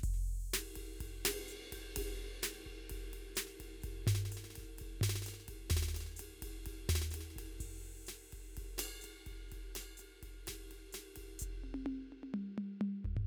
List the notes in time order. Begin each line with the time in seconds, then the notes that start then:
0.01 kick, hi-hat pedal, crash
0.10 kick
0.14 kick, snare
0.54 snare, hi-hat pedal, ride
0.76 kick, ride
0.82 kick
1.01 kick, ride
1.06 kick
1.25 snare, ride
1.48 hi-hat pedal
1.73 kick, ride
1.78 kick
1.95 kick, hi-hat pedal, ride
2.03 kick
2.21 ride
2.43 snare, hi-hat pedal, ride
2.54 snare
2.66 kick
2.72 kick
2.89 kick, hi-hat pedal, ride
2.96 kick
3.13 ride
3.36 snare, hi-hat pedal, ride
3.47 snare
3.60 kick, ride
3.74 snare
3.79 snare, hi-hat pedal
3.84 kick, ride
3.90 kick
4.07 snare, floor tom
4.15 snare
4.25 snare
4.32 hi-hat pedal, ride
4.37 snare
4.44 snare
4.50 snare
4.55 kick, snare, ride
4.59 snare
4.63 kick, snare
4.70 snare
4.73 snare
4.78 kick, snare, hi-hat pedal, ride
5.01 snare, floor tom
5.09 snare
5.16 snare
5.22 snare, hi-hat pedal
5.27 snare, ride bell
5.34 snare
5.40 snare
5.48 kick, ride
5.54 kick
5.70 kick, snare, floor tom, hi-hat pedal
5.77 snare
5.83 snare
5.89 snare
5.95 snare, ride bell
6.00 snare
6.06 snare
6.12 snare
6.16 snare, hi-hat pedal, ride
6.20 snare
6.30 snare
6.42 kick, ride
6.48 kick
6.63 kick, hi-hat pedal, ride
6.72 kick
6.89 snare, floor tom
6.95 snare
7.02 snare
7.11 snare, hi-hat pedal, ride
7.21 snare
7.30 snare
7.36 kick, snare, ride
7.42 kick, snare
7.51 snare
7.55 snare, hi-hat pedal
7.60 kick, snare, crash
7.66 kick
8.07 snare, hi-hat pedal, ride
8.33 kick, ride
8.38 kick
8.55 kick, hi-hat pedal, ride
8.63 kick
8.78 snare, ride bell
8.96 snare
9.02 hi-hat pedal, ride
9.11 snare
9.27 kick, ride
9.32 kick
9.49 kick, hi-hat pedal, ride
9.57 kick
9.75 snare, ride bell
9.97 hi-hat pedal, ride
10.23 kick, ride
10.28 kick
10.46 kick, snare, hi-hat pedal, ride
10.54 kick
10.71 ride
10.93 snare, hi-hat pedal, ride
11.16 kick, ride
11.39 kick, hi-hat pedal
11.64 high tom
11.74 high tom
11.86 high tom
12.12 high tom
12.23 high tom
12.34 mid tom
12.58 mid tom
12.81 mid tom
13.05 kick, floor tom
13.11 kick
13.17 floor tom